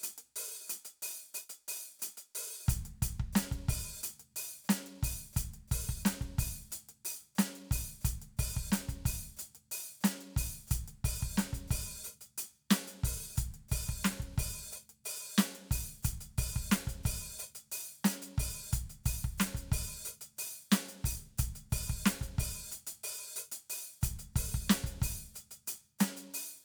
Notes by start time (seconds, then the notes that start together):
0.01 closed hi-hat, hi-hat pedal
0.18 closed hi-hat
0.36 open hi-hat
0.67 closed hi-hat, hi-hat pedal
0.85 closed hi-hat
1.02 open hi-hat
1.34 open hi-hat, hi-hat pedal
1.49 closed hi-hat
1.68 open hi-hat
1.99 closed hi-hat, hi-hat pedal
2.17 closed hi-hat
2.35 open hi-hat
2.66 closed hi-hat, kick, hi-hat pedal
2.85 closed hi-hat
3.02 open hi-hat, kick
3.20 kick
3.33 closed hi-hat, snare, hi-hat pedal
3.51 kick, closed hi-hat
3.68 open hi-hat, kick
4.01 closed hi-hat, hi-hat pedal
4.20 closed hi-hat
4.36 open hi-hat
4.64 hi-hat pedal
4.69 closed hi-hat, snare
4.86 closed hi-hat
5.03 open hi-hat, kick
5.33 closed hi-hat, kick, hi-hat pedal
5.54 closed hi-hat
5.68 open hi-hat, kick, hi-hat pedal
5.89 kick
6.01 hi-hat pedal
6.05 closed hi-hat, snare
6.21 kick, closed hi-hat
6.37 open hi-hat, kick, hi-hat pedal
6.71 closed hi-hat, hi-hat pedal
6.89 closed hi-hat
7.05 open hi-hat
7.35 closed hi-hat, snare, hi-hat pedal
7.55 closed hi-hat
7.71 open hi-hat, kick
8.01 closed hi-hat, kick, hi-hat pedal
8.22 closed hi-hat
8.37 open hi-hat, kick, hi-hat pedal
8.57 kick
8.69 snare, hi-hat pedal
8.73 closed hi-hat
8.89 closed hi-hat, kick
9.05 open hi-hat, kick
9.37 closed hi-hat, hi-hat pedal
9.55 closed hi-hat
9.71 open hi-hat
10.01 closed hi-hat, snare, hi-hat pedal
10.21 closed hi-hat
10.36 open hi-hat, kick, hi-hat pedal
10.67 closed hi-hat, kick, hi-hat pedal
10.88 closed hi-hat
11.04 open hi-hat, kick
11.22 kick
11.36 closed hi-hat, snare, hi-hat pedal
11.53 closed hi-hat, kick
11.68 open hi-hat, kick, hi-hat pedal
12.04 open hi-hat, hi-hat pedal
12.21 closed hi-hat
12.38 closed hi-hat
12.70 closed hi-hat, snare, hi-hat pedal
12.87 closed hi-hat
13.03 open hi-hat, kick
13.35 closed hi-hat, kick, hi-hat pedal
13.54 closed hi-hat
13.68 open hi-hat, kick, hi-hat pedal
13.89 kick
14.03 closed hi-hat, snare, hi-hat pedal
14.20 kick, closed hi-hat
14.33 hi-hat pedal
14.38 open hi-hat, kick
14.72 open hi-hat, hi-hat pedal
14.89 closed hi-hat
15.04 open hi-hat, hi-hat pedal
15.38 closed hi-hat, snare, hi-hat pedal
15.55 closed hi-hat
15.71 open hi-hat, kick
16.03 closed hi-hat, kick, hi-hat pedal
16.21 closed hi-hat
16.38 open hi-hat, kick
16.56 kick
16.70 closed hi-hat, snare, hi-hat pedal
16.87 closed hi-hat, kick
17.03 open hi-hat, kick, hi-hat pedal
17.38 open hi-hat, hi-hat pedal
17.55 closed hi-hat
17.72 open hi-hat
18.04 open hi-hat, snare, hi-hat pedal
18.22 closed hi-hat
18.38 open hi-hat, kick
18.71 closed hi-hat, kick, hi-hat pedal
18.90 closed hi-hat
19.04 open hi-hat, kick, hi-hat pedal
19.24 kick
19.38 closed hi-hat, snare, hi-hat pedal
19.54 closed hi-hat, kick
19.72 open hi-hat, kick
20.04 open hi-hat, hi-hat pedal
20.21 closed hi-hat
20.37 open hi-hat, hi-hat pedal
20.71 closed hi-hat, snare, hi-hat pedal
20.88 closed hi-hat
21.04 open hi-hat, kick, hi-hat pedal
21.38 closed hi-hat, kick, hi-hat pedal
21.55 closed hi-hat
21.70 open hi-hat, kick, hi-hat pedal
21.89 kick
22.04 closed hi-hat, snare, hi-hat pedal
22.21 closed hi-hat, kick
22.35 kick, hi-hat pedal
22.39 open hi-hat
22.70 closed hi-hat, hi-hat pedal
22.87 closed hi-hat
23.03 open hi-hat
23.35 open hi-hat, hi-hat pedal
23.52 closed hi-hat
23.70 open hi-hat
24.01 closed hi-hat, kick, hi-hat pedal
24.19 closed hi-hat
24.33 open hi-hat, kick, hi-hat pedal
24.54 kick
24.67 closed hi-hat, snare, hi-hat pedal
24.84 closed hi-hat, kick
25.00 open hi-hat, kick, hi-hat pedal
25.34 closed hi-hat, hi-hat pedal
25.51 closed hi-hat
25.67 closed hi-hat, hi-hat pedal
25.99 closed hi-hat, snare, hi-hat pedal
26.17 closed hi-hat
26.34 open hi-hat, hi-hat pedal